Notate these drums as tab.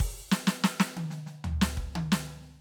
HH |o---------------|
SD |--oooo-og-o--o--|
T1 |------o-----o---|
FT |---------o------|
BD |o----------o----|